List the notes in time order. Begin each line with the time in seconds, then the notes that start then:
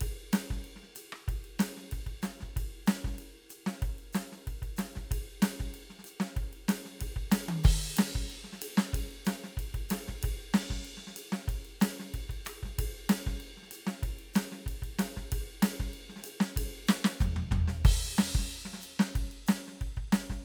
0.01 kick, ride
0.33 snare, hi-hat pedal, ride
0.51 kick, snare
0.64 ride
0.76 snare
0.83 snare
0.89 snare
0.93 snare
0.95 snare, hi-hat pedal, ride
1.13 cross-stick
1.28 kick, ride
1.45 ride
1.59 snare, hi-hat pedal, ride
1.77 snare
1.92 kick, ride
2.07 kick, ride
2.22 snare, hi-hat pedal, ride
2.40 kick, snare
2.57 kick, ride
2.87 snare, hi-hat pedal, ride
3.05 kick, snare
3.14 snare
3.19 ride
3.38 snare
3.40 snare
3.43 snare
3.50 hi-hat pedal, ride
3.67 snare
3.82 kick, ride
3.99 ride
4.13 snare, hi-hat pedal, ride
4.32 snare
4.47 kick, ride
4.62 kick, ride
4.77 snare, hi-hat pedal, ride
4.96 kick, snare
5.11 kick, ride
5.42 snare, hi-hat pedal, ride
5.59 kick, snare
5.74 ride
5.90 snare
5.99 snare
6.05 hi-hat pedal, ride
6.20 snare
6.37 kick, ride
6.53 ride
6.68 snare, hi-hat pedal, ride
6.86 snare
7.00 kick, snare, ride
7.16 kick
7.31 snare, hi-hat pedal, ride
7.49 high tom
7.64 kick, crash
7.97 snare, hi-hat pedal, ride
8.15 kick
8.30 ride
8.44 snare
8.53 snare
8.62 hi-hat pedal, ride
8.78 snare
8.93 kick, ride
9.11 ride
9.25 snare, hi-hat pedal, ride
9.44 snare
9.57 kick, ride
9.74 kick, ride
9.89 snare, hi-hat pedal, ride
10.08 kick, snare
10.23 kick, ride
10.54 snare, hi-hat pedal, ride
10.70 kick, snare
10.75 snare
10.85 ride
10.97 snare
11.07 snare
11.11 snare
11.16 hi-hat pedal, ride
11.32 snare
11.48 kick, ride
11.65 ride
11.81 snare, hi-hat pedal, ride
12.00 snare
12.14 kick, ride
12.30 kick, ride
12.45 cross-stick, hi-hat pedal, ride
12.63 kick, snare
12.79 kick, ride
13.10 snare, hi-hat pedal, ride
13.27 kick, snare
13.40 ride
13.57 snare
13.63 snare
13.71 hi-hat pedal, ride
13.87 snare
14.03 kick, ride
14.19 ride
14.34 snare, hi-hat pedal, ride
14.52 snare
14.66 kick, ride
14.82 kick, ride
14.99 snare, hi-hat pedal, ride
15.17 kick, snare
15.32 kick, ride
15.63 snare, hi-hat pedal, ride
15.80 kick, snare
15.94 ride
16.09 snare
16.16 snare
16.19 snare
16.21 snare, ride
16.25 hi-hat pedal
16.41 snare
16.57 kick, ride
16.86 kick, snare, hi-hat pedal, ride
17.05 snare
17.20 kick, floor tom, hi-hat pedal
17.36 floor tom
17.51 kick, floor tom
17.68 snare
17.85 kick, hi-hat pedal, crash
18.18 snare, hi-hat pedal, crash
18.35 kick, snare
18.48 snare, hi-hat pedal
18.65 snare
18.74 snare
18.77 snare
18.80 snare, hi-hat pedal, crash
19.00 snare
19.15 kick, crash
19.32 crash
19.47 snare, hi-hat pedal, crash
19.68 snare
19.81 kick, crash
19.97 kick, crash
20.13 snare, hi-hat pedal, crash
20.30 kick, snare